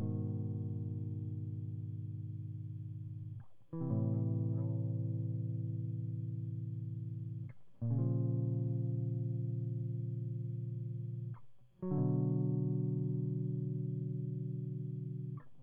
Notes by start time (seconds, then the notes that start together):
0.00 G#2 B2 D#3
3.74 E3
3.82 C3
3.92 A2
7.83 A#2
7.92 C#3
8.00 F3
11.84 F#3
11.92 D3
11.99 B2